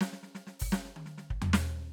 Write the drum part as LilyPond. \new DrumStaff \drummode { \time 4/4 \tempo 4 = 125 sn16 sn16 sn16 sn16 sn16 <hho bd>16 <hhp sn>16 sn16 <tommh hh>16 sn16 sn16 bd16 tomfh16 sn8. | }